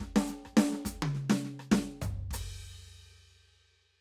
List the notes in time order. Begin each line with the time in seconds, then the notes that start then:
0.01 kick, snare
0.08 kick
0.17 snare
0.28 snare, hi-hat pedal
0.46 kick, cross-stick
0.58 snare
0.73 snare
0.86 kick, snare, hi-hat pedal
0.95 kick
1.03 high tom
1.15 snare
1.30 snare
1.45 snare
1.60 cross-stick
1.72 kick, snare
1.78 kick
2.02 kick, hi-hat pedal, floor tom
2.10 kick
2.24 kick
2.31 kick, cross-stick, hi-hat pedal, crash
2.45 kick